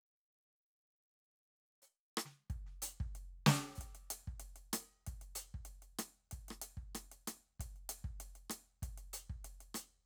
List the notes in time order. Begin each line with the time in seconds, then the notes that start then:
1.82 hi-hat pedal
2.17 cross-stick
2.25 snare
2.50 kick, closed hi-hat
2.66 snare
2.82 closed hi-hat
3.00 kick
3.15 closed hi-hat
3.46 snare, open hi-hat
3.63 snare
3.75 kick, hi-hat pedal
3.81 closed hi-hat
3.95 closed hi-hat
4.10 closed hi-hat
4.27 kick
4.40 closed hi-hat
4.56 closed hi-hat
4.73 cross-stick, closed hi-hat
5.06 kick, closed hi-hat
5.21 closed hi-hat
5.35 closed hi-hat
5.54 kick
5.65 closed hi-hat
5.82 closed hi-hat
5.99 cross-stick, closed hi-hat
6.31 kick, closed hi-hat
6.48 cross-stick, closed hi-hat
6.61 closed hi-hat
6.77 kick
6.95 cross-stick, closed hi-hat
7.11 closed hi-hat
7.27 cross-stick, closed hi-hat
7.59 kick, closed hi-hat
7.76 closed hi-hat
7.89 closed hi-hat
8.04 kick
8.20 closed hi-hat
8.35 closed hi-hat
8.50 cross-stick, closed hi-hat
8.82 kick, closed hi-hat
8.97 closed hi-hat
9.13 closed hi-hat
9.29 kick
9.44 closed hi-hat
9.60 closed hi-hat
9.74 closed hi-hat, cross-stick